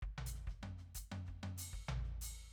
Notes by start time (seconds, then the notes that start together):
0.02 kick
0.18 floor tom
0.26 hi-hat pedal
0.34 snare
0.47 kick, snare
0.63 high tom
0.78 snare
0.94 kick, snare, hi-hat pedal
1.12 high tom
1.25 kick, snare
1.43 high tom
1.56 snare, hi-hat pedal
1.73 kick
1.89 floor tom
2.04 snare
2.21 hi-hat pedal